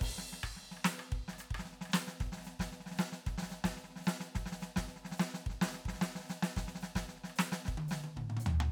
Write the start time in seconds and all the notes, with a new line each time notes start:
0.01 kick, crash
0.08 kick
0.18 snare
0.28 hi-hat pedal
0.32 snare
0.43 kick, cross-stick
0.56 snare
0.62 snare
0.67 snare
0.71 snare
0.77 cross-stick
0.80 cross-stick
0.84 snare, hi-hat pedal
0.99 cross-stick
1.12 kick, snare
1.18 kick
1.28 snare
1.33 cross-stick
1.38 cross-stick, snare, hi-hat pedal
1.51 kick, cross-stick
1.59 snare
1.65 snare
1.72 snare
1.81 snare
1.85 cross-stick, snare
1.92 snare, hi-hat pedal
2.07 snare
2.20 kick, snare
2.27 kick
2.32 snare
2.37 snare
2.40 snare, hi-hat pedal
2.46 snare
2.59 kick, snare
2.72 snare
2.80 snare
2.86 snare
2.91 snare
2.96 snare, hi-hat pedal
2.99 snare
3.12 snare
3.26 kick, snare
3.38 snare
3.42 snare
3.47 snare, hi-hat pedal
3.51 snare
3.64 kick, snare
3.77 snare
3.84 snare
3.90 snare
3.96 snare
4.04 snare, hi-hat pedal
4.20 snare
4.35 kick, snare
4.46 snare
4.52 snare
4.60 snare, hi-hat pedal
4.76 kick, snare
4.88 snare
4.96 snare
5.03 snare
5.12 snare
5.17 snare, hi-hat pedal
5.34 snare
5.46 kick, snare
5.61 snare
5.66 snare
5.71 snare, hi-hat pedal
5.85 kick, snare
5.94 snare
5.98 snare
6.01 snare
6.15 snare
6.20 snare
6.24 snare
6.29 hi-hat pedal
6.42 snare
6.56 kick, snare
6.63 kick
6.67 snare
6.75 snare
6.81 snare, hi-hat pedal
6.95 kick, snare
7.08 snare
7.16 snare
7.23 snare
7.30 cross-stick
7.36 snare, hi-hat pedal
7.52 snare
7.65 kick, snare
7.74 kick, high tom
7.88 snare, hi-hat pedal
8.04 high tom
8.16 kick, mid tom
8.30 mid tom
8.37 hi-hat pedal, mid tom
8.46 floor tom
8.60 mid tom